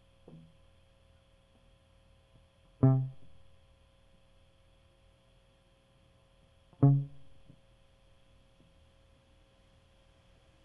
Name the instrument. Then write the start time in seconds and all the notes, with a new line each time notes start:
electric guitar
2.85 C3
6.85 C#3